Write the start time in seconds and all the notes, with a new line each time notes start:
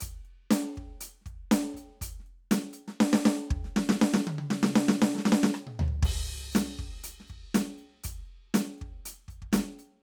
0.01 closed hi-hat, kick
0.25 closed hi-hat
0.51 closed hi-hat, snare
0.76 kick, closed hi-hat
1.01 closed hi-hat
1.22 snare
1.26 kick, closed hi-hat
1.52 closed hi-hat, snare
1.74 closed hi-hat, kick
2.02 closed hi-hat, kick
2.20 snare
2.27 closed hi-hat
2.52 closed hi-hat, snare
2.74 closed hi-hat
2.88 snare
3.01 snare
3.14 snare
3.26 snare
3.51 kick
3.65 snare
3.77 snare
3.89 snare
4.02 snare
4.14 snare
4.28 high tom
4.39 high tom
4.51 snare
4.63 snare
4.76 snare
4.89 snare
5.02 snare
5.15 snare
5.19 snare
5.26 snare
5.33 snare
5.44 snare
5.55 cross-stick
5.67 mid tom
5.80 floor tom
5.88 kick
6.03 kick, crash
6.53 closed hi-hat, snare, hi-hat pedal
6.79 kick, closed hi-hat
7.04 closed hi-hat
7.20 snare
7.28 closed hi-hat, kick
7.55 closed hi-hat, snare
7.78 closed hi-hat
8.04 closed hi-hat, kick
8.19 snare
8.26 closed hi-hat
8.55 closed hi-hat, snare
8.79 kick, closed hi-hat
9.06 closed hi-hat
9.29 closed hi-hat, kick
9.42 kick
9.52 closed hi-hat, kick, snare
9.58 snare
9.79 closed hi-hat